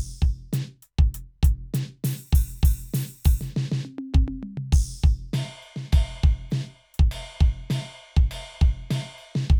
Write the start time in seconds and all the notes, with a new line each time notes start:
0.23 kick
0.54 closed hi-hat, snare
0.83 closed hi-hat
0.99 kick
1.15 closed hi-hat
1.44 closed hi-hat, kick
1.75 closed hi-hat, snare
2.05 open hi-hat, snare
2.33 open hi-hat, kick
2.64 open hi-hat, kick
2.95 open hi-hat, snare
3.26 open hi-hat, kick
3.42 snare, hi-hat pedal
3.57 snare
3.73 snare
3.86 high tom
3.99 high tom
4.15 kick, high tom
4.29 high tom
4.44 mid tom
4.58 floor tom
4.73 kick, crash
5.04 kick
5.34 snare, ride bell
5.63 ride
5.77 snare
5.93 kick, ride bell
6.24 kick
6.51 snare, hi-hat pedal, ride
6.95 closed hi-hat
7.00 kick
7.12 ride bell
7.42 kick
7.71 snare, ride bell
8.18 kick
8.32 ride bell
8.62 kick, snare
8.92 snare, ride bell
9.19 ride
9.36 snare
9.51 kick